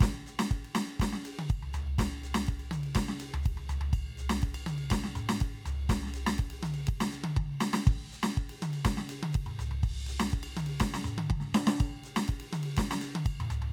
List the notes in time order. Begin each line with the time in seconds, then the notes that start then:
0.01 kick, snare, hi-hat pedal, ride
0.27 hi-hat pedal, ride
0.40 snare
0.51 kick, hi-hat pedal, ride
0.65 ride
0.76 snare, hi-hat pedal
0.90 ride
1.00 kick, snare, hi-hat pedal, ride
1.14 snare
1.25 hi-hat pedal, ride
1.40 high tom
1.49 kick, hi-hat pedal, ride bell
1.63 floor tom
1.74 floor tom, hi-hat pedal
1.99 kick, snare, hi-hat pedal, ride bell
2.24 hi-hat pedal, ride
2.35 snare
2.48 kick, hi-hat pedal, ride
2.60 ride bell
2.72 hi-hat pedal, high tom
2.84 ride
2.96 kick, snare, hi-hat pedal, ride bell
3.09 snare
3.20 hi-hat pedal, ride
3.35 floor tom
3.44 kick, hi-hat pedal, ride
3.58 floor tom
3.70 floor tom, hi-hat pedal
3.82 floor tom
3.94 kick, hi-hat pedal, ride bell
4.18 hi-hat pedal, ride
4.30 snare
4.42 kick, hi-hat pedal, ride
4.55 ride bell
4.67 hi-hat pedal, high tom
4.79 ride bell
4.91 kick, snare, hi-hat pedal, ride bell
5.05 snare
5.16 hi-hat pedal, mid tom
5.30 snare
5.40 kick, hi-hat pedal, ride
5.66 floor tom, hi-hat pedal
5.90 kick, snare, hi-hat pedal, ride
6.04 snare
6.07 snare
6.15 hi-hat pedal, ride
6.27 snare
6.39 kick, hi-hat pedal, ride
6.51 ride
6.64 hi-hat pedal, high tom
6.75 ride bell
6.88 kick, hi-hat pedal, ride
7.01 snare
7.12 hi-hat pedal
7.24 high tom
7.35 kick, hi-hat pedal, high tom
7.61 snare, hi-hat pedal
7.74 snare
7.86 kick, hi-hat pedal, crash
8.13 hi-hat pedal
8.24 snare
8.37 kick, hi-hat pedal
8.50 ride
8.63 hi-hat pedal, high tom
8.74 ride bell
8.86 kick, snare, hi-hat pedal, ride
8.98 snare
9.10 hi-hat pedal, ride
9.23 high tom
9.33 kick, hi-hat pedal, ride
9.47 mid tom
9.54 mid tom
9.60 floor tom, hi-hat pedal
9.72 floor tom
9.84 kick, hi-hat pedal, ride
10.07 hi-hat pedal, ride
10.20 snare
10.31 kick, hi-hat pedal, ride
10.44 ride bell
10.57 hi-hat pedal, high tom
10.67 ride
10.81 kick, snare, hi-hat pedal, ride
10.95 snare
11.05 hi-hat pedal, mid tom
11.19 high tom
11.28 kick, hi-hat pedal, high tom
11.41 snare
11.46 snare
11.50 kick, snare
11.55 snare, hi-hat pedal
11.68 snare
11.78 kick, hi-hat pedal, ride bell
12.05 hi-hat pedal, ride
12.17 snare
12.29 kick, hi-hat pedal, ride
12.41 ride
12.53 hi-hat pedal, high tom
12.64 ride
12.78 kick, snare, hi-hat pedal, ride
12.92 snare
13.02 hi-hat pedal, ride
13.16 high tom
13.26 kick, hi-hat pedal, ride bell
13.41 mid tom
13.51 floor tom, hi-hat pedal
13.63 floor tom